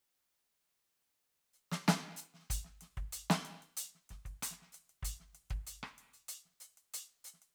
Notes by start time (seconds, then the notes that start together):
1.53 hi-hat pedal
1.71 snare
1.88 snare
2.16 hi-hat pedal
2.34 snare
2.38 snare
2.41 snare
2.50 closed hi-hat, kick
2.64 snare
2.81 snare, closed hi-hat
2.97 kick, closed hi-hat
3.12 closed hi-hat
3.30 snare
3.45 closed hi-hat
3.62 closed hi-hat
3.77 closed hi-hat
3.94 snare
4.09 kick, snare, closed hi-hat
4.25 kick, closed hi-hat
4.42 open hi-hat, cross-stick
4.51 snare
4.61 snare
4.65 snare
4.72 closed hi-hat, hi-hat pedal
4.89 closed hi-hat
5.02 closed hi-hat, kick
5.20 snare
5.33 snare, closed hi-hat
5.50 kick, closed hi-hat
5.67 closed hi-hat
5.83 cross-stick
5.98 closed hi-hat
6.13 closed hi-hat
6.28 open hi-hat
6.45 snare
6.49 snare
6.60 closed hi-hat, hi-hat pedal
6.77 closed hi-hat
6.94 open hi-hat
7.24 closed hi-hat, hi-hat pedal
7.33 snare
7.42 closed hi-hat